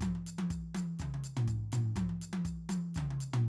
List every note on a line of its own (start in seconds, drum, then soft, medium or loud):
0.01 kick medium
0.01 high tom loud
0.01 percussion medium
0.15 high tom medium
0.27 percussion medium
0.39 high tom loud
0.51 kick medium
0.51 percussion medium
0.75 high tom loud
0.75 percussion medium
0.99 kick medium
0.99 mid tom loud
0.99 percussion medium
1.14 mid tom medium
1.24 percussion medium
1.37 floor tom loud
1.48 kick medium
1.48 percussion medium
1.72 floor tom loud
1.72 percussion medium
1.96 kick medium
1.96 high tom loud
1.96 percussion medium
2.10 high tom medium
2.13 high tom soft
2.22 percussion medium
2.33 high tom loud
2.45 kick medium
2.45 percussion medium
2.70 high tom loud
2.70 percussion medium
2.95 kick medium
2.95 mid tom loud
2.95 percussion medium
3.11 mid tom medium
3.21 percussion medium
3.34 floor tom loud